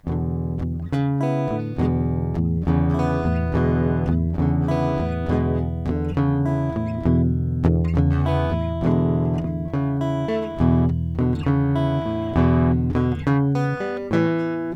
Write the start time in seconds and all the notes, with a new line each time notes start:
0.08 E2 B2
0.13 D3
0.61 E2 B2
0.87 E2
0.93 C#3 D#3
1.22 B3 E4
1.49 E2 A2
1.54 D3
1.77 E2 B2 D3
1.82 G#3
2.36 E2 A2
2.68 E2 C#3 D3
2.95 E4
3.00 B3
3.27 E2 A2
3.53 E2 B2 D3
3.58 G#3
4.06 A2
4.10 E2
4.35 E2
4.41 C#3 D3
4.69 B3 E4
4.99 E2 A2
5.28 E2 B2 D3
5.34 G#3
5.86 E2 B2
5.92 D3
6.13 E2
6.18 C#3 D3
6.46 B3 E4
6.77 A2
7.07 E2 B2 D3
7.64 E2 B2 D3
7.95 E2 C#3 D3
8.27 B3 E4
8.51 E2 A2
8.82 E2 B2
8.87 D3 G#3
9.43 A2 D3
9.74 C#3 D3
10.02 E4
10.29 D3 A3
10.60 E2 B2 D3
10.90 B2 D3
11.20 B2 D3
11.48 C#3 D3
11.76 B3 E4
12.07 A2 D3
12.37 E2 B2 D3
12.91 E2
12.96 B2 D3
13.28 C#3 D3
13.56 B3
13.81 G3
14.12 A2 E3
14.16 G3